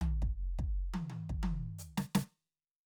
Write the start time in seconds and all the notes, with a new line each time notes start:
0.01 floor tom
0.22 kick
0.59 kick
0.94 high tom
1.10 high tom
1.29 kick
1.43 high tom
1.79 hi-hat pedal
1.97 snare
2.15 snare